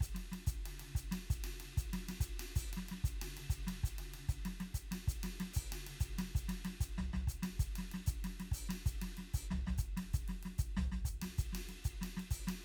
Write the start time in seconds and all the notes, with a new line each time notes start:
0.01 kick, hi-hat pedal
0.15 snare, ride
0.32 snare, ride
0.47 kick, hi-hat pedal
0.66 high tom, ride
0.80 high tom, ride
0.96 kick, hi-hat pedal
1.12 snare, ride
1.31 kick, hi-hat pedal
1.45 high tom, ride
1.61 high tom, ride
1.78 kick, hi-hat pedal
1.94 snare, ride
2.09 snare, ride
2.21 kick, hi-hat pedal
2.40 ride
2.56 kick, hi-hat pedal
2.74 snare, ride
2.89 snare, ride
3.05 kick, hi-hat pedal
3.22 high tom, ride
3.37 high tom, ride
3.50 kick, hi-hat pedal
3.67 snare, ride
3.84 kick, hi-hat pedal
3.99 high tom, ride
4.14 high tom, ride
4.29 kick, hi-hat pedal
4.46 snare, ride
4.61 snare, ride
4.75 kick, hi-hat pedal
4.92 snare, ride
5.08 kick, hi-hat pedal
5.24 snare, ride
5.41 snare, ride
5.54 kick, hi-hat pedal
5.72 high tom, ride
5.87 high tom, ride
6.01 kick, hi-hat pedal
6.19 snare, ride
6.36 kick, hi-hat pedal
6.49 snare, ride
6.65 snare, ride
6.81 kick, hi-hat pedal
6.98 snare, floor tom
7.14 snare, floor tom
7.28 kick, hi-hat pedal
7.43 snare, ride
7.60 kick, hi-hat pedal
7.76 snare, ride
7.92 snare, ride
8.07 kick, hi-hat pedal
8.25 snare, ride
8.40 snare, ride
8.52 kick, hi-hat pedal
8.70 snare, ride
8.86 kick, hi-hat pedal
9.02 snare, ride
9.18 snare, ride
9.34 kick, hi-hat pedal
9.51 snare, floor tom
9.67 snare, floor tom
9.79 kick, hi-hat pedal
9.97 snare, ride
10.14 kick, hi-hat pedal
10.29 snare, ride
10.43 snare, ride
10.59 kick, hi-hat pedal
10.77 snare, floor tom
10.92 snare
11.05 kick, hi-hat pedal
11.22 snare, ride
11.39 kick, hi-hat pedal
11.53 snare, ride
11.69 snare, ride
11.85 kick, hi-hat pedal
12.02 snare, ride
12.17 snare, ride
12.31 kick, hi-hat pedal
12.48 snare, ride